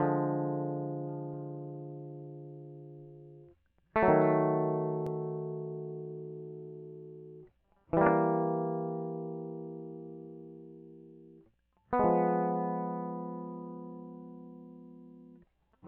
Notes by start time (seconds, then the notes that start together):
0.00 D3 F3 G#3
3.96 A3
4.03 F#3
4.09 D#3
7.93 E3 G3
8.01 A#3
8.07 D4
11.93 B3
11.99 G#3
12.04 F3